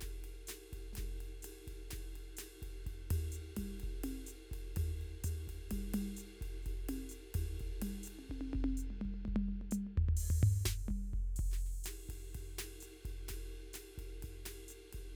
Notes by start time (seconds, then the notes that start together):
0.01 kick, snare, ride
0.08 kick
0.24 ride
0.47 snare, hi-hat pedal, ride
0.50 snare
0.73 kick, ride
0.78 kick
0.93 snare, hi-hat pedal, mid tom, ride
0.97 kick, snare
1.04 kick
1.20 ride
1.42 snare, hi-hat pedal, crash, ride
1.67 kick, ride
1.73 kick
1.90 kick, snare, ride
1.99 kick
2.16 ride
2.37 snare, hi-hat pedal, ride
2.62 kick, ride
2.68 kick
2.84 kick, hi-hat pedal, ride
2.92 kick
3.10 floor tom, ride
3.32 hi-hat pedal
3.57 kick, mid tom, ride
3.64 kick
3.79 hi-hat pedal, ride
3.83 kick
3.89 kick
4.04 high tom, ride
4.26 hi-hat pedal, ride
4.51 kick, ride
4.57 kick
4.76 kick, floor tom, hi-hat pedal, ride
4.84 kick
5.01 ride
5.24 floor tom, hi-hat pedal, ride
5.48 kick, ride
5.53 kick
5.69 kick, hi-hat pedal, mid tom, ride
5.78 kick
5.94 mid tom, ride
6.17 hi-hat pedal, ride
6.41 kick, ride
6.47 kick
6.62 kick, hi-hat pedal, ride
6.72 kick
6.89 high tom, ride
7.09 hi-hat pedal, ride
7.34 kick, floor tom, ride
7.41 kick
7.60 kick, ride
7.66 kick
7.82 mid tom, ride
8.03 hi-hat pedal
8.07 ride
8.19 high tom
8.30 kick, high tom
8.35 kick
8.41 high tom
8.53 kick, high tom
8.64 high tom
8.77 hi-hat pedal
8.90 mid tom
9.01 kick, mid tom
9.10 kick, mid tom
9.25 kick, mid tom
9.36 mid tom
9.48 mid tom
9.61 mid tom
9.71 hi-hat pedal, mid tom
9.87 mid tom
9.97 kick, floor tom
10.09 floor tom
10.17 kick, hi-hat pedal
10.30 floor tom
10.42 kick, floor tom
10.65 kick, snare
10.72 kick
10.88 kick, mid tom
10.96 kick
11.13 kick
11.20 kick
11.36 kick, crash
11.45 kick
11.51 snare
11.53 snare
11.66 snare
11.84 snare, hi-hat pedal, ride
12.09 kick, ride
12.14 kick
12.35 kick, ride
12.41 kick
12.58 snare, ride
12.80 hi-hat pedal, ride
13.05 kick, ride
13.11 kick
13.28 kick, snare, hi-hat pedal, ride
13.36 kick
13.73 snare, hi-hat pedal, ride
13.98 kick, ride
14.03 kick
14.21 kick, hi-hat pedal, ride
14.29 kick
14.45 snare, ride
14.68 hi-hat pedal, ride
14.93 kick, ride
15.00 kick